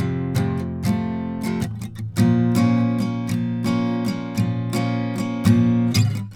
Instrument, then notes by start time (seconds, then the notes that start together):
acoustic guitar
0.00 F2 C3 F3
0.37 F2 C3 F3 A3
0.60 F2 C3
0.85 F2 C3 F3 A3
1.46 F2 C3 F3 A3
1.64 E2
2.18 E2 A#2 F3 A#3 C#4
2.57 A#2 F3 A#3 C#4
3.00 F3 A#3 C#4
3.31 A#2 F3 A#3 C#4
3.66 F3 A#3 C#4
4.07 F3 A#3 C#4
4.39 A#2 F3 A#3
4.75 F3 A#3 C#4
5.17 A#3 C#4
5.22 F3
5.47 A#2 F3 A#3 C#4